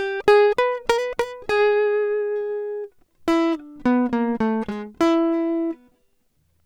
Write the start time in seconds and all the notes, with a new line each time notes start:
0.00 G4
0.29 G#4
0.59 B4
0.90 B4
1.20 B4
1.50 G#4
3.29 E4
3.54 D4
3.87 B3
4.14 A#3
4.42 A3
4.70 G#3
5.02 E4